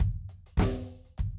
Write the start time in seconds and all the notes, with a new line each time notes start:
0.01 kick, closed hi-hat
0.30 closed hi-hat
0.47 closed hi-hat
0.58 kick, snare
0.89 closed hi-hat
1.06 closed hi-hat
1.19 kick, closed hi-hat